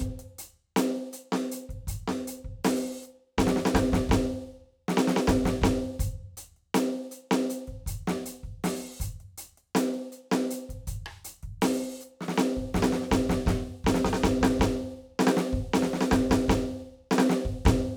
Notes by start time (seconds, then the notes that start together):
0.01 kick, hi-hat pedal
0.19 closed hi-hat
0.38 closed hi-hat
0.76 closed hi-hat, snare
0.96 closed hi-hat
1.12 closed hi-hat, hi-hat pedal
1.32 snare
1.52 closed hi-hat
1.69 kick, closed hi-hat
1.87 closed hi-hat, kick
2.08 snare
2.27 closed hi-hat
2.44 kick
2.64 open hi-hat, snare
3.02 hi-hat pedal
3.38 kick, snare
3.47 snare
3.56 snare
3.65 snare
3.74 kick, snare
3.92 kick, snare
4.09 kick, snare
4.88 snare
4.97 snare
5.08 snare
5.16 snare
5.28 kick, snare
5.44 kick, snare
5.62 kick, snare
5.99 closed hi-hat, kick
6.37 closed hi-hat
6.56 closed hi-hat
6.74 closed hi-hat, snare
7.11 closed hi-hat
7.31 snare
7.50 closed hi-hat
7.67 kick, closed hi-hat
7.86 closed hi-hat, kick
8.08 snare
8.26 closed hi-hat
8.43 kick, closed hi-hat
8.64 open hi-hat, snare
8.99 closed hi-hat, kick, hi-hat pedal
9.20 closed hi-hat
9.38 closed hi-hat
9.58 closed hi-hat
9.75 closed hi-hat, snare
9.94 closed hi-hat
10.12 closed hi-hat
10.32 snare
10.51 closed hi-hat
10.69 kick, closed hi-hat
10.87 closed hi-hat, kick
11.06 cross-stick
11.25 closed hi-hat
11.43 kick, closed hi-hat
11.62 open hi-hat, snare
12.00 hi-hat pedal
12.21 snare
12.28 snare
12.35 snare, hi-hat pedal
12.57 kick
12.74 kick, snare
12.83 snare
12.92 snare
13.01 snare
13.11 kick, snare
13.29 kick, snare
13.46 kick, snare
13.84 kick, snare
13.94 snare
14.04 kick, snare
14.13 snare
14.23 kick, snare
14.41 kick, snare
14.59 kick, snare
15.19 snare
15.27 snare
15.37 snare
15.53 kick
15.74 snare
15.80 kick, snare
15.93 snare
16.01 snare
16.11 kick, snare
16.30 kick, snare
16.48 kick, snare
17.11 snare
17.18 snare
17.30 snare
17.45 kick
17.65 kick, snare